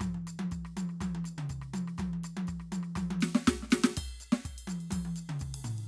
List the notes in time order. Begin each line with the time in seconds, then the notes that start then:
0.01 kick, cross-stick, high tom, percussion
0.15 high tom
0.28 cross-stick, percussion
0.40 high tom
0.52 kick, cross-stick, percussion
0.66 cross-stick
0.78 high tom, percussion
0.90 cross-stick
1.01 kick, cross-stick, high tom, percussion
1.16 high tom
1.25 cross-stick, percussion
1.39 mid tom
1.50 kick, cross-stick, percussion
1.62 cross-stick
1.74 high tom, percussion
1.88 cross-stick
1.99 kick, cross-stick, high tom, percussion
2.14 high tom
2.24 cross-stick, percussion
2.38 high tom
2.48 kick, cross-stick, percussion
2.61 cross-stick
2.73 high tom, percussion
2.84 cross-stick
2.96 kick, cross-stick, high tom, percussion
3.11 high tom
3.22 snare, percussion
3.36 snare
3.45 kick, snare, percussion
3.63 snare
3.68 snare
3.70 snare, percussion
3.73 snare
3.84 snare
3.95 kick, ride bell, percussion
4.21 percussion
4.33 snare
4.44 kick, ride bell, percussion
4.59 ride bell
4.68 high tom, percussion
4.81 ride bell
4.91 kick, high tom, ride bell, percussion
5.06 high tom
5.17 ride, percussion
5.30 mid tom
5.40 kick, ride, percussion
5.55 ride
5.65 floor tom, percussion
5.79 ride